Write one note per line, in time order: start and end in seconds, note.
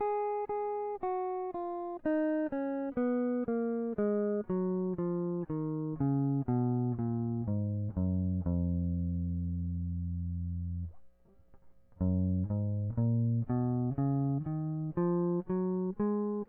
0.01 0.47 G#4
0.50 0.99 G#4
1.03 1.56 F#4
1.56 2.01 F4
2.06 2.50 D#4
2.53 2.94 C#4
2.98 3.47 B3
3.49 3.97 A#3
3.99 4.45 G#3
4.51 4.97 F#3
4.99 5.46 F3
5.51 5.98 D#3
6.02 6.45 C#3
6.50 6.97 B2
7.00 7.47 A#2
7.49 7.94 G#2
8.00 8.45 F#2
8.48 10.92 F2
12.04 12.48 F#2
12.53 12.95 G#2
12.99 13.46 A#2
13.51 13.95 B2
13.99 14.44 C#3
14.50 14.92 D#3
14.98 15.43 F3
15.50 15.94 F#3
16.00 16.46 G#3